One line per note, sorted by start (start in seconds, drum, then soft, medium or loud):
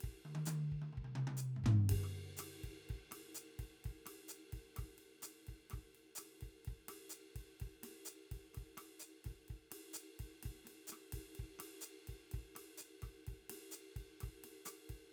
0.01 kick soft
0.01 ride medium
0.09 kick soft
0.25 high tom soft
0.35 high tom medium
0.46 hi-hat pedal medium
0.46 high tom medium
0.61 high tom soft
0.72 kick soft
0.72 high tom soft
0.82 high tom soft
0.93 mid tom soft
0.98 kick soft
1.03 kick soft
1.03 mid tom soft
1.16 mid tom medium
1.27 mid tom loud
1.37 hi-hat pedal medium
1.57 floor tom soft
1.64 kick soft
1.64 floor tom loud
1.70 kick soft
1.90 kick soft
1.90 ride loud
1.98 kick soft
2.04 cross-stick soft
2.37 cross-stick soft
2.37 snare soft
2.37 hi-hat pedal medium
2.37 ride medium
2.64 kick soft
2.64 ride soft
2.89 kick soft
2.89 ride soft
2.96 kick soft
3.12 cross-stick soft
3.12 ride medium
3.35 hi-hat pedal medium
3.35 ride soft
3.59 kick soft
3.59 ride soft
3.85 kick soft
3.85 ride soft
3.91 kick soft
4.06 cross-stick soft
4.06 ride medium
4.29 hi-hat pedal medium
4.29 ride soft
4.53 kick soft
4.53 ride soft
4.76 kick soft
4.76 cross-stick soft
4.76 snare soft
4.76 ride medium
4.84 kick soft
4.98 ride soft
5.23 cross-stick soft
5.23 hi-hat pedal medium
5.23 ride medium
5.47 kick soft
5.47 ride soft
5.70 kick soft
5.70 cross-stick soft
5.70 snare soft
5.70 ride soft
5.79 kick soft
5.95 ride soft
6.16 cross-stick soft
6.16 snare soft
6.16 hi-hat pedal medium
6.16 ride medium
6.41 kick soft
6.41 ride soft
6.65 kick soft
6.65 ride soft
6.73 kick soft
6.88 cross-stick soft
6.88 snare soft
6.88 ride medium
7.10 hi-hat pedal medium
7.10 ride soft
7.36 kick soft
7.36 ride soft
7.60 kick soft
7.60 ride soft
7.67 kick soft
7.83 snare soft
7.83 ride medium
8.05 hi-hat pedal medium
8.05 ride soft
8.32 kick soft
8.32 ride soft
8.37 kick soft
8.54 kick soft
8.54 cross-stick soft
8.54 ride soft
8.63 kick soft
8.78 cross-stick soft
8.78 ride medium
9.00 hi-hat pedal medium
9.00 ride soft
9.25 kick soft
9.25 snare soft
9.25 ride soft
9.31 kick soft
9.49 kick soft
9.49 ride soft
9.71 cross-stick soft
9.71 ride medium
9.94 hi-hat pedal medium
9.94 ride soft
10.20 kick soft
10.20 ride soft
10.43 kick soft
10.43 snare soft
10.43 ride medium
10.51 kick soft
10.51 snare soft
10.65 snare soft
10.65 ride soft
10.88 hi-hat pedal medium
10.88 ride soft
10.92 cross-stick soft
10.92 snare soft
11.13 kick soft
11.13 ride medium
11.19 kick soft
11.35 ride soft
11.40 kick soft
11.44 kick soft
11.59 cross-stick soft
11.59 ride medium
11.81 hi-hat pedal medium
11.81 ride soft
12.08 kick soft
12.08 ride soft
12.32 kick soft
12.32 ride soft
12.39 kick soft
12.56 cross-stick soft
12.56 ride medium
12.78 hi-hat pedal medium
12.78 ride soft
13.02 kick soft
13.02 cross-stick soft
13.02 snare soft
13.02 ride soft
13.27 kick soft
13.27 ride soft
13.33 kick soft
13.40 snare soft
13.50 snare soft
13.50 ride medium
13.72 hi-hat pedal medium
13.72 ride soft
13.96 kick soft
13.96 ride soft
14.21 kick soft
14.21 cross-stick soft
14.21 snare soft
14.21 ride soft
14.29 kick soft
14.44 snare soft
14.44 ride medium
14.66 cross-stick soft
14.66 hi-hat pedal medium
14.66 ride medium
14.90 kick soft
14.90 ride soft